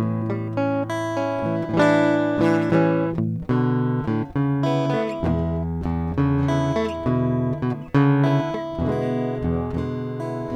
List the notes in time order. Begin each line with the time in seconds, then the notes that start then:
0.00 A2 E3
0.30 G3
0.58 C#4
0.90 E4
1.17 C#4
1.40 A2
1.46 E3
1.70 A2
1.75 E3 G3
1.80 D4 E4
2.39 A2 E3
2.73 E3 G3 C#4
3.05 B3
3.19 A2
3.50 B2 D3
4.01 A2
4.06 D3
4.37 C#3 D3
4.64 B3 E4
4.91 B3
4.95 A3
5.24 E2
5.29 G#3
5.85 E2
6.14 E2
6.19 C#3 D3
6.38 E2
6.49 B3 E4
6.77 A3
7.07 B2 D3
7.63 B2
7.95 C#3 D3
8.24 B3 E4
8.55 G#3
8.80 E2 B2
8.85 D3 G#3
8.90 B3
9.44 E2
9.72 E2 B2 D3
9.79 G#3
10.23 B3
10.30 E4